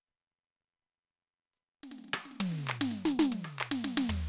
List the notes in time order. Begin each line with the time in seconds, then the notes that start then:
1.53 hi-hat pedal
1.83 snare
1.91 snare
1.98 snare
2.04 snare
2.08 snare
2.13 cross-stick
2.25 snare
2.31 snare
2.36 snare
2.40 high tom
2.52 snare
2.58 snare
2.65 snare, percussion
2.81 snare
3.05 snare
3.19 snare
3.32 high tom
3.44 cross-stick
3.58 percussion
3.71 snare
3.84 snare
3.97 snare
4.09 floor tom